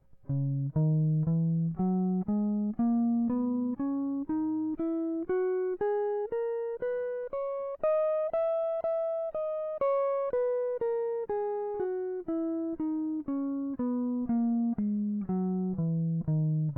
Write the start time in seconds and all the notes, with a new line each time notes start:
0.31 C#3
0.77 D#3
1.28 E3
1.81 F#3
2.29 G#3
2.80 A#3
3.30 B3
3.80 C#4
4.30 D#4
4.80 E4
5.30 F#4
5.81 G#4
6.33 A#4
6.83 B4
7.34 C#5
7.84 D#5
8.34 E5
8.84 E5
9.35 D#5
9.82 C#5
10.34 B4
10.82 A#4
11.30 G#4
11.80 F#4
12.29 E4
12.80 D#4
13.29 C#4
13.80 B3
14.30 A#3
14.79 G#3
15.30 F#3
15.80 E3
16.30 D#3